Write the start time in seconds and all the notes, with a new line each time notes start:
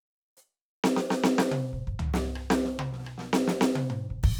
0.37 hi-hat pedal
0.84 snare
0.97 snare
1.10 snare
1.24 snare
1.38 snare
1.52 high tom
1.73 kick
1.87 kick
1.99 floor tom
2.14 snare
2.24 snare
2.36 cross-stick
2.50 snare
2.65 snare
2.79 high tom
2.92 snare
2.98 snare
3.02 snare
3.07 cross-stick
3.18 snare
3.21 snare
3.25 snare
3.33 snare
3.48 snare
3.61 snare
3.75 high tom
3.90 mid tom
4.10 kick
4.23 kick, crash